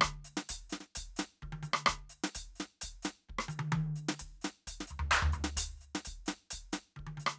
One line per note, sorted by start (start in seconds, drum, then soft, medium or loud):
0.01 kick soft
0.01 cross-stick loud
0.24 hi-hat pedal medium
0.36 snare medium
0.49 closed hi-hat medium
0.49 kick soft
0.69 snare medium
0.69 hi-hat pedal soft
0.80 snare soft
0.95 closed hi-hat medium
0.95 kick soft
1.16 snare medium
1.16 hi-hat pedal medium
1.42 kick soft
1.42 high tom soft
1.62 hi-hat pedal soft
1.62 high tom medium
1.73 cross-stick medium
1.86 kick soft
1.86 cross-stick loud
2.09 hi-hat pedal medium
2.23 snare medium
2.34 closed hi-hat medium
2.34 kick soft
2.55 hi-hat pedal soft
2.59 snare medium
2.81 closed hi-hat medium
2.81 kick soft
3.02 snare medium
3.02 hi-hat pedal soft
3.28 kick soft
3.28 high tom soft
3.38 cross-stick medium
3.48 hi-hat pedal soft
3.48 high tom medium
3.59 high tom medium
3.72 kick soft
3.72 high tom loud
3.95 hi-hat pedal soft
4.08 snare medium
4.19 kick soft
4.19 closed hi-hat medium
4.41 snare medium
4.41 hi-hat pedal soft
4.67 closed hi-hat medium
4.67 kick soft
4.80 snare soft
4.87 floor tom soft
4.87 hi-hat pedal medium
4.99 floor tom medium
5.10 kick soft
5.10 percussion loud
5.22 floor tom loud
5.32 floor tom medium
5.32 hi-hat pedal soft
5.44 snare medium
5.56 closed hi-hat loud
5.56 kick soft
5.77 hi-hat pedal soft
5.77 open hi-hat soft
5.94 snare medium
6.05 closed hi-hat medium
6.05 kick soft
6.26 snare medium
6.26 hi-hat pedal medium
6.50 closed hi-hat medium
6.50 kick soft
6.72 snare medium
6.72 hi-hat pedal medium
6.96 kick soft
6.96 high tom soft
7.06 high tom medium
7.17 hi-hat pedal soft
7.17 high tom soft
7.26 cross-stick medium